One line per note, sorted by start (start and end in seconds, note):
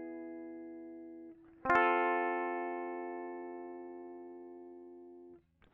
1.66 5.37 C4
1.70 5.41 F4
1.76 4.66 A4